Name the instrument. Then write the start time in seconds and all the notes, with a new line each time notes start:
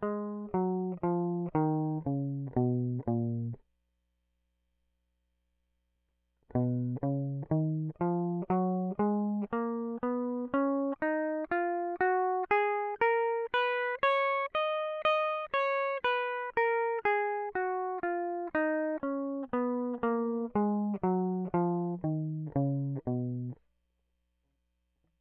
electric guitar
0.03 G#3
0.55 F#3
1.04 F3
1.56 D#3
2.08 C#3
2.58 B2
3.09 A#2
6.56 B2
7.04 C#3
7.52 D#3
8.02 F3
8.51 F#3
9.00 G#3
9.53 A#3
10.03 B3
10.54 C#4
11.02 D#4
11.52 F4
12.01 F#4
12.51 G#4
13.02 A#4
13.54 B4
14.03 C#5
14.55 D#5
15.05 D#5
15.54 C#5
16.05 B4
16.57 A#4
17.06 G#4
17.56 F#4
18.03 F4
18.55 D#4
19.03 C#4
19.54 B3
20.04 A#3
20.56 G#3
21.04 F#3
21.55 F3
22.05 D#3
22.57 C#3
23.09 B2